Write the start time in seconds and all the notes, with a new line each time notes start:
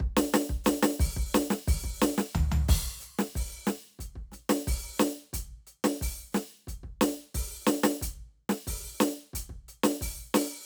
0.01 kick
0.18 snare
0.33 snare, hi-hat pedal
0.50 kick
0.65 snare, hi-hat pedal
0.83 snare
1.00 open hi-hat, kick
1.17 kick
1.35 snare, hi-hat pedal
1.51 snare
1.68 open hi-hat, kick
1.85 kick
2.03 snare
2.19 snare
2.36 kick, floor tom
2.53 floor tom
2.69 kick, crash
3.01 closed hi-hat, hi-hat pedal
3.05 kick
3.20 snare
3.36 open hi-hat, kick
3.67 closed hi-hat, snare, hi-hat pedal
4.00 closed hi-hat, kick
4.16 kick
4.32 closed hi-hat, snare, hi-hat pedal
4.50 snare
4.68 open hi-hat, kick
4.98 closed hi-hat, snare, hi-hat pedal
5.34 closed hi-hat, kick
5.68 closed hi-hat
5.85 snare
6.02 open hi-hat, kick
6.33 closed hi-hat, snare, hi-hat pedal
6.68 closed hi-hat, kick
6.84 kick
7.02 closed hi-hat, snare
7.35 open hi-hat, kick
7.65 snare, hi-hat pedal
7.84 snare
8.02 closed hi-hat, kick
8.50 snare
8.68 open hi-hat, kick
8.99 closed hi-hat, snare, hi-hat pedal
9.34 closed hi-hat, kick
9.50 kick
9.69 closed hi-hat
9.84 snare
10.02 open hi-hat, kick
10.35 open hi-hat, snare